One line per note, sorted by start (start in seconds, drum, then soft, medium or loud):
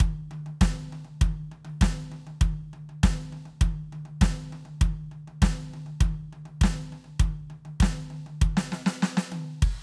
0.00 kick loud
0.00 high tom loud
0.31 high tom medium
0.46 high tom medium
0.61 kick loud
0.61 snare loud
0.61 high tom loud
0.92 high tom medium
1.05 high tom medium
1.21 kick loud
1.21 high tom loud
1.52 high tom medium
1.65 high tom medium
1.70 crash soft
1.81 kick loud
1.81 snare loud
1.81 high tom loud
2.12 high tom medium
2.27 high tom medium
2.41 kick loud
2.41 high tom loud
2.73 high tom medium
2.89 high tom medium
3.03 kick loud
3.03 snare loud
3.03 high tom loud
3.32 high tom medium
3.45 high tom medium
3.61 kick loud
3.61 high tom loud
3.92 high tom medium
4.05 high tom medium
4.21 kick loud
4.21 snare loud
4.21 high tom loud
4.52 high tom medium
4.65 high tom medium
4.81 kick loud
4.81 high tom loud
5.11 high tom medium
5.28 high tom medium
5.42 kick loud
5.42 snare loud
5.42 high tom loud
5.74 high tom medium
5.86 high tom medium
6.01 kick loud
6.01 high tom loud
6.33 high tom medium
6.45 high tom medium
6.61 kick loud
6.61 snare loud
6.61 high tom loud
6.92 high tom medium
7.04 high tom medium
7.20 kick loud
7.20 high tom loud
7.50 high tom medium
7.65 high tom medium
7.80 kick loud
7.80 snare loud
7.80 high tom loud
8.10 high tom medium
8.26 high tom medium
8.42 kick loud
8.42 high tom loud
8.57 snare loud
8.72 snare medium
8.86 snare loud
9.02 snare loud
9.17 snare loud
9.32 high tom loud
9.62 kick loud
9.62 crash medium